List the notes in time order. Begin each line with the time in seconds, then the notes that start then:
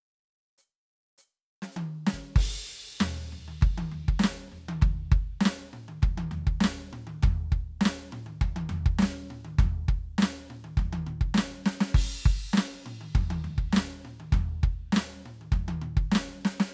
0.58 hi-hat pedal
1.18 hi-hat pedal
1.62 snare
1.72 hi-hat pedal
1.77 high tom
2.07 snare
2.13 kick
2.36 kick, crash, ride
2.98 snare, floor tom, hi-hat pedal
3.33 floor tom
3.48 high tom
3.61 kick, floor tom
3.78 high tom
3.92 floor tom
4.08 kick
4.20 snare
4.24 snare
4.52 floor tom
4.69 high tom
4.82 kick, floor tom
5.12 kick
5.41 snare
5.46 snare, hi-hat pedal
5.73 mid tom
5.88 high tom
6.02 kick, floor tom
6.18 high tom
6.31 floor tom
6.47 kick
6.61 snare
6.64 snare
6.93 mid tom
7.07 high tom
7.23 kick, floor tom
7.52 kick
7.81 snare
7.86 snare
8.12 mid tom
8.26 high tom
8.41 kick, floor tom
8.56 high tom
8.69 floor tom
8.86 kick
8.99 snare
9.02 snare
9.30 mid tom
9.45 high tom
9.59 kick, floor tom
9.88 kick
10.18 snare
10.22 snare
10.50 mid tom
10.64 high tom
10.77 kick, floor tom
10.93 high tom
11.07 mid tom
11.21 kick
11.34 snare
11.38 snare
11.66 snare
11.81 snare
11.95 kick, crash
12.26 kick
12.37 kick
12.53 snare
12.58 snare
12.86 mid tom
13.01 high tom
13.15 kick, floor tom
13.30 high tom
13.44 floor tom
13.58 kick
13.73 snare
13.77 snare
14.05 mid tom
14.20 high tom
14.32 kick, floor tom
14.63 kick
14.93 snare
14.96 snare
15.26 mid tom
15.41 high tom
15.52 kick, floor tom
15.68 high tom
15.82 mid tom
15.97 kick
16.12 snare
16.15 snare
16.45 snare
16.60 snare